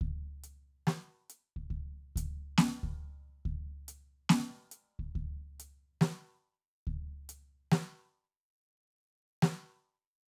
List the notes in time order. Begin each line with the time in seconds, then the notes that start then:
0.01 kick
0.44 closed hi-hat
0.87 snare
1.30 closed hi-hat
1.56 kick
1.70 kick
2.16 kick, closed hi-hat
2.58 snare
2.83 kick
3.45 kick
3.88 closed hi-hat
4.29 snare
4.72 closed hi-hat
4.99 kick
5.15 kick
5.60 closed hi-hat
6.01 snare
6.87 kick
7.29 closed hi-hat
7.72 snare
9.43 snare